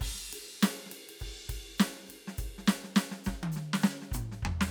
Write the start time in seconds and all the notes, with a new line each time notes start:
0.01 kick, crash
0.08 kick
0.12 kick, snare
0.29 snare
0.33 snare, ride
0.61 snare, hi-hat pedal, ride
0.69 cross-stick
0.86 snare, hi-hat pedal
0.92 snare, ride
1.09 ride
1.19 kick, hi-hat pedal, ride
1.45 snare
1.49 kick, ride
1.56 kick
1.60 kick
1.78 snare, hi-hat pedal, ride
1.89 snare
2.07 kick, hi-hat pedal, ride
2.28 snare
2.38 kick, hi-hat pedal, ride
2.45 kick
2.58 snare
2.67 snare, hi-hat pedal
2.84 snare
2.95 snare, hi-hat pedal
3.12 snare
3.24 kick, snare, hi-hat pedal
3.33 kick
3.36 kick
3.43 high tom
3.52 hi-hat pedal
3.56 snare
3.73 snare
3.81 snare, hi-hat pedal
4.02 snare
4.12 kick, hi-hat pedal, mid tom
4.22 kick
4.32 snare
4.43 kick, floor tom
4.49 kick
4.61 snare